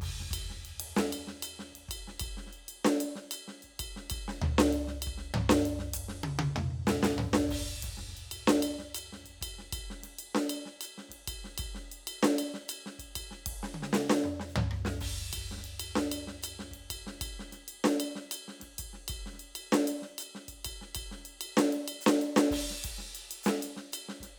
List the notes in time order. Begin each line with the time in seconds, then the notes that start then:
0.01 kick, hi-hat pedal, crash
0.09 kick
0.20 snare
0.31 kick, ride bell
0.50 snare
0.59 cross-stick
0.65 ride
0.80 ride
0.97 snare
1.13 ride bell
1.27 snare
1.42 hi-hat pedal, ride bell
1.59 snare
1.73 kick, ride
1.77 snare
1.88 kick, hi-hat pedal, ride bell
2.08 snare
2.20 kick, ride bell
2.27 kick
2.37 snare
2.47 snare
2.53 ride bell
2.68 ride bell
2.85 snare
3.00 ride bell
3.16 snare
3.31 hi-hat pedal, ride bell
3.48 snare
3.61 kick, snare, ride bell
3.67 snare
3.79 kick, hi-hat pedal, ride bell
3.96 snare
4.10 kick, ride bell
4.18 kick
4.28 snare
4.42 floor tom
4.58 snare
4.73 ride
4.88 snare
5.02 ride bell
5.07 kick
5.18 snare
5.34 floor tom
5.49 snare
5.59 hi-hat pedal
5.66 ride
5.79 snare
5.94 kick, hi-hat pedal, ride
6.08 snare
6.24 high tom
6.39 high tom
6.56 mid tom
6.71 cross-stick
6.87 snare
6.91 hi-hat pedal
7.03 snare
7.18 floor tom
7.33 snare
7.46 kick, hi-hat pedal
7.51 crash
7.55 kick
7.67 cross-stick
7.83 kick, ride, floor tom
7.91 kick
7.97 snare
8.08 snare
8.17 ride bell
8.31 ride bell
8.48 snare
8.62 ride bell
8.79 snare
8.95 hi-hat pedal, ride bell
9.12 snare
9.24 kick, ride bell
9.28 snare
9.41 kick, ride bell
9.47 kick
9.58 snare
9.73 kick, ride bell
9.79 kick
9.90 snare
10.03 snare, ride
10.19 ride bell
10.35 snare
10.50 ride bell
10.66 snare
10.81 hi-hat pedal, ride bell
10.98 snare
11.09 kick, snare, ride
11.27 kick, ride bell
11.44 snare
11.58 kick, ride bell
11.65 kick
11.75 snare
11.92 ride bell
12.07 ride bell
12.23 snare
12.38 ride bell
12.54 snare
12.69 hi-hat pedal, ride bell
12.86 snare
12.99 kick, ride bell
13.16 kick, ride bell
13.31 snare
13.46 kick, ride
13.52 kick
13.63 snare
13.74 high tom
13.83 snare
13.93 snare
14.10 snare
14.24 mid tom
14.40 snare
14.49 hi-hat pedal
14.56 floor tom
14.71 cross-stick
14.85 snare
15.00 kick, hi-hat pedal, crash
15.11 kick
15.17 cross-stick
15.33 kick, ride bell
15.51 snare
15.57 snare
15.62 snare, ride
15.80 ride bell
15.96 snare
16.12 ride bell
16.27 snare
16.43 hi-hat pedal, ride bell
16.59 snare
16.71 kick, snare, ride
16.90 kick, ride bell
17.07 snare
17.21 kick, ride bell
17.27 kick
17.39 snare
17.52 snare, ride bell
17.68 ride bell
17.84 snare
18.00 ride bell
18.15 snare
18.31 hi-hat pedal, ride bell
18.48 snare
18.60 kick, snare, ride
18.78 kick, ride bell
18.93 snare
19.08 kick, ride bell
19.15 kick
19.26 snare
19.33 snare
19.40 ride bell
19.55 ride bell
19.72 snare
19.87 ride bell
20.02 snare
20.18 hi-hat pedal, ride bell
20.35 snare
20.48 kick, ride bell
20.65 kick, ride bell
20.81 snare
20.95 kick, ride bell
21.11 snare
21.19 snare
21.25 ride bell
21.41 ride bell
21.57 snare
21.65 snare
21.73 ride
21.88 ride bell
22.01 hi-hat pedal
22.06 snare
22.21 ride bell
22.36 snare
22.46 snare
22.51 kick, crash
22.57 kick
22.70 snare
22.84 kick, ride
22.98 snare
23.04 snare
23.10 snare
23.15 ride bell
23.31 ride bell
23.43 snare, hi-hat pedal
23.62 ride bell
23.76 snare
23.92 hi-hat pedal, ride bell
24.09 snare
24.20 kick, snare, ride bell